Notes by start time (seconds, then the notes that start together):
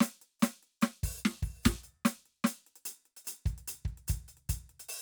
0.01 closed hi-hat, snare
0.22 closed hi-hat
0.40 closed hi-hat, snare, hi-hat pedal
0.63 closed hi-hat
0.82 closed hi-hat, snare
1.04 open hi-hat, kick
1.20 hi-hat pedal
1.26 snare
1.43 kick, open hi-hat
1.64 closed hi-hat, kick, snare, hi-hat pedal
1.84 closed hi-hat
2.05 closed hi-hat, snare
2.26 closed hi-hat
2.45 closed hi-hat, snare
2.67 closed hi-hat
2.76 closed hi-hat
2.86 closed hi-hat
3.06 closed hi-hat
3.17 closed hi-hat
3.25 closed hi-hat, hi-hat pedal
3.46 closed hi-hat, kick
3.58 closed hi-hat
3.68 closed hi-hat
3.85 kick, closed hi-hat
3.98 closed hi-hat
4.08 closed hi-hat, kick, hi-hat pedal
4.29 closed hi-hat
4.37 closed hi-hat
4.50 open hi-hat, kick
4.70 closed hi-hat
4.80 closed hi-hat
4.89 open hi-hat